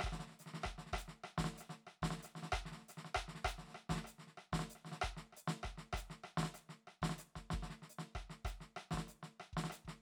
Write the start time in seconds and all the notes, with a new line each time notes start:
0.01 kick, cross-stick
0.07 cross-stick
0.13 snare
0.20 snare
0.27 snare
0.30 snare
0.40 snare, hi-hat pedal
0.47 snare
0.54 snare
0.61 cross-stick, snare
0.66 kick
0.79 snare
0.87 snare
0.93 kick, cross-stick
0.99 hi-hat pedal
1.09 snare
1.24 cross-stick
1.39 kick, snare
1.45 snare
1.54 snare
1.59 cross-stick, hi-hat pedal
1.70 snare
1.88 cross-stick
2.03 kick, snare
2.11 snare
2.18 snare
2.23 cross-stick, hi-hat pedal
2.31 snare
2.36 snare
2.43 snare
2.53 kick, cross-stick
2.66 snare
2.72 snare
2.77 snare
2.83 snare
2.89 cross-stick, hi-hat pedal
2.98 snare
3.05 snare
3.15 kick, cross-stick
3.29 snare
3.36 snare
3.41 snare
3.45 kick, cross-stick, hi-hat pedal
3.59 snare
3.64 snare
3.68 snare
3.75 cross-stick
3.90 kick, snare
3.96 snare
4.05 cross-stick, hi-hat pedal
4.14 snare
4.19 snare
4.28 snare
4.38 cross-stick
4.53 kick, snare
4.60 snare
4.68 snare, hi-hat pedal
4.76 cross-stick
4.82 snare
4.85 snare
5.02 kick, cross-stick
5.17 snare
5.33 cross-stick
5.37 hi-hat pedal
5.48 snare
5.64 kick, cross-stick
5.78 snare
5.93 kick, cross-stick
5.98 hi-hat pedal
6.11 snare
6.24 cross-stick
6.38 kick, snare
6.44 snare
6.55 cross-stick, hi-hat pedal
6.70 snare
6.88 cross-stick
7.03 kick, snare
7.10 snare
7.18 snare, hi-hat pedal
7.36 kick, snare
7.51 kick, snare
7.63 snare
7.70 snare
7.83 snare
7.90 hi-hat pedal
7.99 snare
8.16 kick, cross-stick
8.30 snare
8.45 kick, cross-stick, hi-hat pedal
8.61 snare
8.77 cross-stick
8.92 kick, snare
8.98 snare
9.08 snare, hi-hat pedal
9.24 snare
9.40 cross-stick
9.54 kick, snare
9.65 snare
9.71 cross-stick, hi-hat pedal
9.86 kick, snare